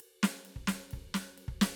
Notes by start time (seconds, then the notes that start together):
0.00 ride
0.23 snare, ride
0.45 ride
0.56 kick
0.67 snare, ride
0.91 kick, ride
1.14 snare, ride
1.38 ride
1.48 kick
1.61 snare, ride